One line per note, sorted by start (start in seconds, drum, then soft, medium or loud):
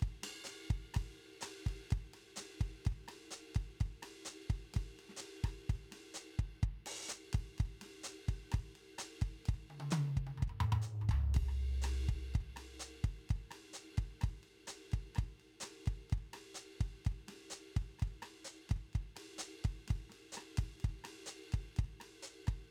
0.01 kick soft
0.01 ride soft
0.08 kick soft
0.24 snare soft
0.24 ride bell medium
0.45 hi-hat pedal medium
0.45 ride medium
0.71 kick soft
0.71 ride soft
0.95 kick soft
0.95 cross-stick soft
0.95 ride medium
1.02 kick soft
1.42 cross-stick soft
1.42 hi-hat pedal medium
1.42 ride medium
1.67 kick soft
1.67 ride soft
1.92 kick soft
1.92 ride soft
1.98 kick soft
2.14 cross-stick soft
2.14 ride medium
2.37 snare soft
2.37 hi-hat pedal medium
2.37 ride medium
2.62 kick soft
2.62 ride soft
2.86 kick soft
2.86 ride soft
2.93 kick soft
3.09 cross-stick soft
3.09 ride medium
3.32 hi-hat pedal medium
3.32 ride soft
3.55 kick soft
3.55 snare soft
3.55 ride soft
3.81 kick soft
3.81 ride soft
3.87 kick soft
4.03 cross-stick soft
4.03 ride medium
4.26 hi-hat pedal medium
4.26 ride soft
4.51 kick soft
4.51 ride soft
4.75 kick soft
4.75 snare soft
4.75 ride medium
5.00 ride soft
5.10 snare soft
5.17 hi-hat pedal medium
5.17 ride medium
5.45 kick soft
5.45 cross-stick soft
5.45 ride medium
5.70 kick soft
5.70 ride soft
5.75 kick soft
5.92 snare soft
5.92 ride medium
6.15 hi-hat pedal medium
6.40 kick soft
6.64 kick soft
6.64 ride soft
6.87 open hi-hat loud
6.87 ride medium
7.09 hi-hat pedal loud
7.34 kick soft
7.34 ride medium
7.40 kick soft
7.59 kick soft
7.59 ride soft
7.66 kick soft
7.82 snare soft
7.82 ride medium
8.04 hi-hat pedal medium
8.04 ride soft
8.29 kick soft
8.29 ride soft
8.53 kick soft
8.53 cross-stick soft
8.53 ride medium
8.60 kick soft
8.76 ride soft
8.99 cross-stick soft
8.99 hi-hat pedal medium
8.99 ride medium
9.22 kick soft
9.22 ride soft
9.46 kick soft
9.46 ride medium
9.55 kick soft
9.71 high tom soft
9.81 high tom medium
9.91 hi-hat pedal medium
9.91 high tom medium
10.07 high tom soft
10.17 kick soft
10.17 high tom soft
10.28 high tom soft
10.38 mid tom soft
10.43 kick soft
10.48 kick soft
10.48 mid tom soft
10.61 mid tom medium
10.73 mid tom loud
10.83 hi-hat pedal medium
11.02 floor tom soft
11.10 kick soft
11.10 floor tom loud
11.15 kick soft
11.35 kick soft
11.35 ride loud
11.43 kick soft
11.49 cross-stick soft
11.83 cross-stick soft
11.83 snare soft
11.83 hi-hat pedal medium
11.83 ride medium
12.09 kick soft
12.09 ride soft
12.35 kick soft
12.35 ride soft
12.41 kick soft
12.57 cross-stick soft
12.57 ride medium
12.80 hi-hat pedal medium
12.80 ride soft
13.05 kick soft
13.05 ride soft
13.30 kick soft
13.30 ride soft
13.36 kick soft
13.52 cross-stick soft
13.52 ride medium
13.74 hi-hat pedal medium
13.74 ride soft
13.98 kick soft
13.98 ride soft
14.22 kick soft
14.22 cross-stick soft
14.22 snare soft
14.22 ride medium
14.29 kick soft
14.44 ride soft
14.68 cross-stick soft
14.68 hi-hat pedal medium
14.68 ride medium
14.93 kick soft
14.93 ride soft
15.16 kick soft
15.16 cross-stick soft
15.16 snare soft
15.16 ride soft
15.24 kick soft
15.41 ride soft
15.61 cross-stick soft
15.61 snare soft
15.61 hi-hat pedal medium
15.61 ride medium
15.87 kick soft
15.87 ride soft
16.11 kick soft
16.11 ride soft
16.18 kick soft
16.34 cross-stick soft
16.34 snare soft
16.34 ride medium
16.55 hi-hat pedal medium
16.55 ride soft
16.81 kick soft
16.81 ride soft
17.06 kick soft
17.06 ride soft
17.12 kick soft
17.29 snare soft
17.29 ride medium
17.51 hi-hat pedal medium
17.51 ride soft
17.77 kick soft
17.77 ride soft
17.82 kick soft
18.00 kick soft
18.00 cross-stick soft
18.00 ride soft
18.08 kick soft
18.23 cross-stick soft
18.23 ride medium
18.45 hi-hat pedal medium
18.45 ride soft
18.70 kick soft
18.70 snare soft
18.70 ride soft
18.77 kick soft
18.94 kick soft
18.94 ride soft
19.17 cross-stick soft
19.17 ride medium
19.39 hi-hat pedal medium
19.39 ride soft
19.65 kick soft
19.65 ride soft
19.88 kick soft
19.88 snare soft
19.88 ride medium
19.96 kick soft
19.96 snare soft
20.10 snare soft
20.10 ride soft
20.33 hi-hat pedal medium
20.33 ride soft
20.38 cross-stick soft
20.38 snare soft
20.58 kick soft
20.58 ride medium
20.64 kick soft
20.81 ride soft
20.85 kick soft
20.90 kick soft
21.05 cross-stick soft
21.05 ride medium
21.27 hi-hat pedal medium
21.27 ride soft
21.53 kick soft
21.53 ride soft
21.77 kick soft
21.77 ride soft
21.85 kick soft
22.01 cross-stick soft
22.01 ride medium
22.23 hi-hat pedal medium
22.23 ride soft
22.48 kick soft
22.48 cross-stick soft
22.48 snare soft
22.48 ride soft